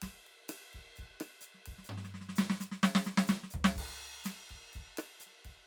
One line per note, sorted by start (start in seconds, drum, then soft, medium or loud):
0.01 kick soft
0.01 snare medium
0.01 hi-hat pedal soft
0.01 ride loud
0.07 kick soft
0.26 ride soft
0.48 cross-stick medium
0.48 hi-hat pedal medium
0.48 ride loud
0.73 kick soft
0.73 ride soft
0.79 kick soft
0.95 kick soft
0.95 hi-hat pedal soft
0.95 ride soft
1.04 kick soft
1.20 cross-stick medium
1.20 ride medium
1.41 hi-hat pedal medium
1.54 snare soft
1.66 kick soft
1.66 ride medium
1.73 kick soft
1.78 snare soft
1.84 hi-hat pedal medium
1.89 mid tom medium
1.97 snare soft
2.04 snare soft
2.04 hi-hat pedal soft
2.14 snare soft
2.21 snare soft
2.29 snare medium
2.36 snare loud
2.36 hi-hat pedal medium
2.50 snare loud
2.60 snare medium
2.60 hi-hat pedal medium
2.71 snare medium
2.83 snare loud
2.83 hi-hat pedal soft
2.95 snare loud
3.04 snare medium
3.04 hi-hat pedal medium
3.17 snare loud
3.27 kick soft
3.27 snare loud
3.27 hi-hat pedal medium
3.43 snare medium
3.50 kick soft
3.50 floor tom medium
3.50 hi-hat pedal medium
3.60 kick soft
3.64 snare loud
3.75 kick soft
3.75 hi-hat pedal soft
3.75 crash medium
3.82 kick soft
3.89 snare soft
4.24 snare medium
4.24 hi-hat pedal medium
4.24 ride loud
4.49 kick soft
4.49 ride soft
4.56 snare soft
4.59 snare soft
4.72 kick soft
4.72 hi-hat pedal soft
4.72 ride soft
4.97 cross-stick medium
4.97 ride loud
5.20 hi-hat pedal medium
5.20 ride soft
5.26 snare soft
5.45 kick soft
5.45 ride soft